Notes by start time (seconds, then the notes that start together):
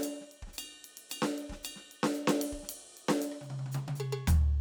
0.01 hi-hat pedal, ride bell
0.21 snare
0.32 ride
0.43 kick
0.47 snare
0.54 snare, hi-hat pedal
0.59 ride bell
0.85 ride
0.98 ride
1.10 hi-hat pedal, ride bell
1.23 snare
1.39 ride
1.50 kick, snare
1.64 hi-hat pedal, ride bell
1.76 snare
1.92 ride
2.04 snare
2.14 hi-hat pedal, ride
2.28 snare
2.42 ride
2.53 kick
2.63 snare
2.69 hi-hat pedal, ride
2.98 ride
3.09 snare
3.21 hi-hat pedal, ride
3.32 cross-stick
3.42 hi-hat pedal, high tom
3.51 high tom
3.60 high tom
3.67 high tom
3.72 hi-hat pedal, high tom
3.88 high tom
3.96 hi-hat pedal
4.01 percussion
4.13 percussion
4.28 kick, hi-hat pedal, floor tom
4.42 kick